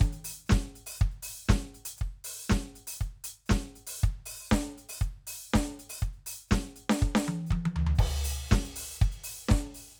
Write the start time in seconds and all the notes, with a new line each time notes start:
0.01 closed hi-hat, kick
0.13 closed hi-hat
0.25 open hi-hat
0.46 snare, hi-hat pedal
0.52 kick
0.63 closed hi-hat
0.76 closed hi-hat
0.86 open hi-hat
0.96 hi-hat pedal
1.00 kick, closed hi-hat
1.11 closed hi-hat
1.23 open hi-hat
1.45 snare, hi-hat pedal
1.50 kick
1.75 closed hi-hat
1.85 closed hi-hat
1.97 closed hi-hat, hi-hat pedal
2.01 kick
2.24 open hi-hat
2.46 snare, hi-hat pedal
2.52 kick
2.74 closed hi-hat, kick
2.87 open hi-hat
2.96 closed hi-hat, hi-hat pedal
3.01 kick
3.09 closed hi-hat
3.24 open hi-hat
3.41 open hi-hat
3.46 snare, hi-hat pedal
3.51 kick
3.65 closed hi-hat
3.76 closed hi-hat
3.87 open hi-hat
4.00 kick, closed hi-hat, hi-hat pedal
4.14 closed hi-hat
4.26 open hi-hat
4.42 open hi-hat
4.48 snare, hi-hat pedal
4.52 kick
4.78 closed hi-hat
4.89 open hi-hat
4.98 kick, hi-hat pedal
5.03 closed hi-hat
5.14 closed hi-hat
5.22 kick
5.27 open hi-hat
5.50 snare, hi-hat pedal
5.55 kick
5.79 open hi-hat
5.90 open hi-hat
5.98 closed hi-hat, hi-hat pedal
6.02 kick
6.13 closed hi-hat
6.26 open hi-hat
6.48 kick, snare, hi-hat pedal
6.66 closed hi-hat
6.72 open hi-hat, kick
6.90 snare
6.97 hi-hat pedal
7.02 kick
7.15 snare
7.28 high tom
7.47 hi-hat pedal
7.51 kick, high tom
7.66 high tom
7.76 floor tom
7.87 floor tom
7.95 kick, hi-hat pedal
7.99 crash
8.24 open hi-hat
8.48 kick, snare, hi-hat pedal
8.65 closed hi-hat
8.76 open hi-hat
8.91 open hi-hat
8.96 hi-hat pedal
9.01 closed hi-hat, kick
9.12 closed hi-hat
9.24 open hi-hat
9.46 snare, hi-hat pedal
9.51 kick
9.65 closed hi-hat
9.72 open hi-hat, kick
9.90 open hi-hat
9.95 hi-hat pedal